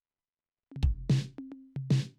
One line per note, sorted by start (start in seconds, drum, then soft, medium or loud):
0.72 high tom soft
0.76 floor tom medium
0.83 kick medium
1.10 snare loud
1.38 high tom medium
1.52 high tom medium
1.76 floor tom medium
1.91 snare loud